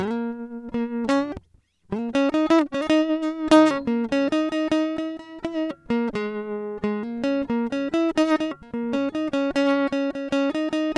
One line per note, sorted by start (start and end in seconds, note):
0.01 0.48 A#3
0.76 1.10 A#3
1.10 1.25 C#4
1.94 2.15 A#3
2.16 2.32 C#4
2.36 2.50 D#4
2.52 2.70 E4
2.76 2.87 C#4
2.91 3.33 D#4
3.53 3.68 D#4
3.58 3.82 D3
3.68 3.84 C#4
3.89 4.10 A#3
4.13 4.31 C#4
4.34 4.51 D#4
4.54 4.71 D#4
4.73 4.98 D#4
4.98 5.18 D#4
5.18 5.42 E4
5.46 5.73 E4
5.92 6.12 A#3
6.17 6.81 G#3
6.85 7.05 G#3
7.05 7.26 A#3
7.25 7.50 C#4
7.51 7.72 A#3
7.74 7.91 C#4
7.95 8.14 E4
8.19 8.31 D#4
8.32 8.39 D#4
8.42 8.57 D#4
8.76 9.01 A#3
8.95 9.12 C#4
9.16 9.32 D#4
9.35 9.53 C#4
9.57 9.92 C#4
9.94 10.13 C#4
10.17 10.31 C#4
10.34 10.53 C#4
10.56 10.71 D#4
10.74 10.95 D#4